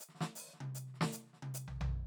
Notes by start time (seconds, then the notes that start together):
0.00 hi-hat pedal
0.09 snare
0.15 snare
0.21 snare
0.35 hi-hat pedal
0.48 snare
0.53 snare
0.60 high tom
0.75 hi-hat pedal
0.87 snare
0.94 snare
1.01 snare
1.12 hi-hat pedal
1.27 snare
1.33 snare
1.42 high tom
1.54 hi-hat pedal
1.68 floor tom
1.81 floor tom